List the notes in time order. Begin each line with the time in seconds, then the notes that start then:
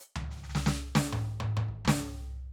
0.00 hi-hat pedal
0.16 floor tom
0.31 snare
0.36 snare
0.43 snare
0.49 snare
0.55 snare
0.66 snare
0.95 snare
1.12 high tom
1.40 high tom
1.57 high tom
1.68 kick
1.85 snare, floor tom